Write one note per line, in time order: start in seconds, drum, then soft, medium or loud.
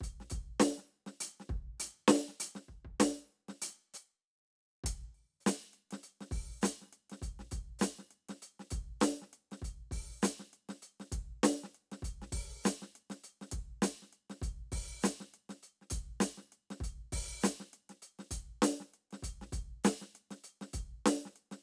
0.01 closed hi-hat medium
0.01 kick medium
0.21 snare soft
0.30 closed hi-hat medium
0.30 kick medium
0.60 closed hi-hat loud
0.60 snare loud
0.78 snare soft
1.07 snare soft
1.21 closed hi-hat loud
1.40 snare soft
1.50 kick medium
1.50 closed hi-hat soft
1.78 closed hi-hat loud
1.78 snare soft
2.08 snare loud
2.08 closed hi-hat soft
2.29 snare soft
2.40 closed hi-hat loud
2.56 snare soft
2.69 kick soft
2.69 closed hi-hat soft
2.85 kick soft
3.00 closed hi-hat loud
3.00 snare loud
3.33 closed hi-hat soft
3.49 snare soft
3.62 closed hi-hat loud
3.94 hi-hat pedal medium
4.84 kick medium
4.84 closed hi-hat loud
5.15 open hi-hat soft
5.41 hi-hat pedal soft
5.47 closed hi-hat loud
5.47 snare loud
5.74 closed hi-hat soft
5.91 snare medium
5.91 closed hi-hat soft
6.04 closed hi-hat medium
6.21 snare soft
6.32 open hi-hat medium
6.32 kick medium
6.62 closed hi-hat loud
6.62 snare loud
6.62 hi-hat pedal medium
6.82 snare soft
6.86 snare soft
6.93 closed hi-hat soft
7.10 snare soft
7.10 closed hi-hat soft
7.22 closed hi-hat medium
7.22 kick medium
7.40 snare soft
7.52 closed hi-hat medium
7.52 kick medium
7.79 closed hi-hat loud
7.79 snare loud
7.79 hi-hat pedal medium
7.99 snare soft
8.11 closed hi-hat soft
8.29 snare soft
8.29 closed hi-hat soft
8.42 closed hi-hat medium
8.60 snare soft
8.71 closed hi-hat medium
8.71 kick medium
9.01 closed hi-hat loud
9.01 snare loud
9.01 hi-hat pedal medium
9.22 snare soft
9.33 closed hi-hat soft
9.52 snare soft
9.52 closed hi-hat soft
9.62 closed hi-hat medium
9.62 kick medium
9.92 open hi-hat medium
9.92 kick medium
10.23 closed hi-hat loud
10.23 snare loud
10.23 hi-hat pedal medium
10.40 snare soft
10.53 closed hi-hat soft
10.69 snare medium
10.69 closed hi-hat soft
10.83 closed hi-hat soft
11.00 snare soft
11.12 kick medium
11.12 closed hi-hat medium
11.44 closed hi-hat loud
11.44 snare loud
11.64 snare soft
11.75 closed hi-hat soft
11.92 snare soft
11.92 closed hi-hat soft
12.03 closed hi-hat medium
12.03 kick medium
12.22 snare soft
12.33 kick medium
12.33 open hi-hat medium
12.64 closed hi-hat loud
12.64 snare loud
12.64 hi-hat pedal medium
12.82 snare soft
12.96 closed hi-hat soft
13.10 snare medium
13.10 closed hi-hat soft
13.24 closed hi-hat medium
13.42 snare soft
13.52 kick medium
13.52 closed hi-hat medium
13.82 closed hi-hat loud
13.82 snare loud
14.02 snare soft
14.13 closed hi-hat soft
14.30 snare soft
14.30 closed hi-hat soft
14.42 closed hi-hat medium
14.42 kick medium
14.72 open hi-hat medium
14.72 kick medium
15.03 closed hi-hat loud
15.03 snare loud
15.03 hi-hat pedal medium
15.21 snare soft
15.34 closed hi-hat soft
15.50 snare soft
15.50 closed hi-hat soft
15.63 closed hi-hat soft
15.82 snare soft
15.90 closed hi-hat loud
15.90 kick medium
16.21 closed hi-hat loud
16.21 snare loud
16.38 snare soft
16.52 closed hi-hat soft
16.71 snare soft
16.71 closed hi-hat soft
16.81 closed hi-hat medium
16.81 kick medium
17.13 open hi-hat loud
17.13 kick medium
17.42 closed hi-hat loud
17.42 snare loud
17.42 hi-hat pedal medium
17.60 snare soft
17.73 closed hi-hat soft
17.90 snare soft
17.90 closed hi-hat soft
18.02 closed hi-hat medium
18.19 snare soft
18.31 closed hi-hat medium
18.31 kick medium
18.62 closed hi-hat loud
18.62 snare loud
18.80 snare soft
18.94 closed hi-hat soft
19.11 snare soft
19.11 closed hi-hat soft
19.23 closed hi-hat medium
19.23 kick soft
19.42 snare soft
19.53 open hi-hat medium
19.53 kick medium
19.84 closed hi-hat loud
19.84 snare loud
19.84 hi-hat pedal medium
20.02 snare soft
20.15 closed hi-hat soft
20.31 snare soft
20.31 closed hi-hat soft
20.44 closed hi-hat medium
20.62 snare soft
20.74 closed hi-hat medium
20.74 kick medium
21.06 closed hi-hat loud
21.06 snare loud
21.26 snare soft
21.36 closed hi-hat soft
21.52 snare soft
21.52 closed hi-hat soft